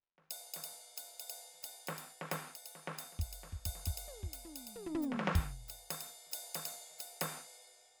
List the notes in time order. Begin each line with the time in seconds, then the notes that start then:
0.18 snare
0.24 snare
0.30 hi-hat pedal, ride
0.54 snare, ride
0.64 ride
0.97 hi-hat pedal, ride
1.20 ride
1.30 ride
1.54 snare
1.62 hi-hat pedal, ride
1.87 snare, ride
1.98 ride
2.21 snare
2.31 snare, hi-hat pedal, ride
2.55 ride
2.66 ride
2.75 snare
2.87 snare
2.98 hi-hat pedal, ride
3.12 snare
3.19 kick, ride
3.33 ride
3.43 snare
3.52 kick
3.65 kick, hi-hat pedal, ride
3.75 snare
3.85 kick, ride
3.97 ride
4.07 high tom
4.23 kick
4.33 hi-hat pedal, ride
4.44 floor tom
4.56 ride
4.67 ride
4.75 mid tom
4.85 floor tom
4.94 floor tom
5.02 hi-hat pedal, high tom
5.12 snare
5.19 snare
5.27 snare
5.35 kick, ride
5.68 hi-hat pedal, ride
5.89 snare, hi-hat pedal, ride
6.01 ride
6.26 snare
6.31 hi-hat pedal, ride
6.51 hi-hat pedal, ride
6.55 snare
6.65 ride
6.90 snare
6.99 hi-hat pedal, ride
7.21 snare, ride